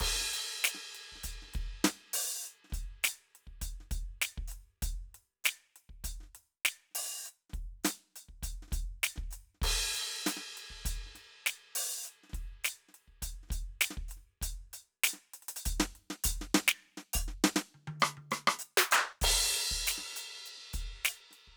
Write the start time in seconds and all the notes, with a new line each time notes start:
0.01 kick, crash
0.07 kick
0.16 snare
0.21 snare
0.27 snare
0.34 closed hi-hat
0.65 open hi-hat, snare, hi-hat pedal
0.75 snare
0.95 closed hi-hat
1.12 kick, snare
1.24 closed hi-hat, kick
1.32 kick
1.43 snare
1.49 snare
1.53 kick, snare, closed hi-hat
1.62 kick
1.65 kick
1.85 closed hi-hat, snare
2.14 open hi-hat
2.44 hi-hat pedal
2.65 snare
2.70 closed hi-hat, kick, snare
2.79 kick
3.04 closed hi-hat, snare, hi-hat pedal
3.35 closed hi-hat
3.47 kick
3.62 closed hi-hat, kick
3.81 snare
3.86 snare
3.91 closed hi-hat, kick
3.98 kick
4.22 closed hi-hat, snare
4.38 kick
4.48 hi-hat pedal
4.52 closed hi-hat
4.83 closed hi-hat, kick
4.90 kick
5.15 closed hi-hat
5.45 closed hi-hat, snare, hi-hat pedal
5.76 closed hi-hat
5.90 kick
6.04 closed hi-hat, kick
6.12 kick
6.21 snare
6.24 snare
6.35 closed hi-hat
6.65 closed hi-hat, snare
6.92 open hi-hat, snare
7.26 hi-hat pedal
7.50 kick, snare
7.54 closed hi-hat
7.84 closed hi-hat, snare, hi-hat pedal
8.16 closed hi-hat
8.29 kick
8.43 closed hi-hat, kick, snare
8.53 kick
8.63 snare
8.68 snare
8.71 closed hi-hat, kick, snare
8.73 snare
8.80 kick
9.04 closed hi-hat, snare
9.16 kick, snare
9.24 kick
9.31 closed hi-hat, hi-hat pedal
9.55 snare
9.62 kick, crash
9.69 kick
9.95 closed hi-hat
10.00 snare
10.27 open hi-hat, snare, hi-hat pedal
10.37 snare
10.58 closed hi-hat
10.71 kick
10.86 closed hi-hat, kick
10.94 kick
11.07 snare
11.15 snare, closed hi-hat
11.47 closed hi-hat, snare
11.76 open hi-hat
12.05 closed hi-hat, hi-hat pedal
12.24 snare
12.30 kick, snare
12.34 snare, closed hi-hat
12.64 closed hi-hat, snare, hi-hat pedal
12.89 snare
12.95 closed hi-hat
13.08 kick
13.22 closed hi-hat, kick
13.43 snare
13.48 snare
13.49 closed hi-hat, kick, snare
13.57 kick
13.81 closed hi-hat, snare
13.91 snare
13.97 kick
14.09 closed hi-hat, hi-hat pedal
14.17 snare
14.42 closed hi-hat, kick
14.73 closed hi-hat
15.04 closed hi-hat, snare
15.14 snare
15.34 closed hi-hat
15.43 closed hi-hat
15.49 closed hi-hat
15.56 closed hi-hat
15.66 closed hi-hat, kick
15.73 kick
15.80 snare
15.96 closed hi-hat
16.11 snare
16.24 closed hi-hat, kick
16.32 kick
16.42 snare
16.55 snare
16.68 snare
16.98 snare
17.14 open hi-hat, kick, hi-hat pedal
17.22 kick
17.28 snare
17.44 snare
17.56 snare
17.75 high tom
17.88 high tom
18.00 cross-stick, hi-hat pedal
18.17 high tom
18.31 cross-stick, hi-hat pedal
18.48 cross-stick
18.59 hi-hat pedal
18.78 snare
18.92 percussion, hi-hat pedal
19.22 kick, hi-hat pedal, crash
19.54 snare
19.72 kick
19.87 open hi-hat, snare
19.98 snare
20.13 closed hi-hat, snare
20.46 open hi-hat, hi-hat pedal
20.58 snare
20.74 closed hi-hat, kick
21.05 open hi-hat, snare, hi-hat pedal
21.31 snare, closed hi-hat
21.48 kick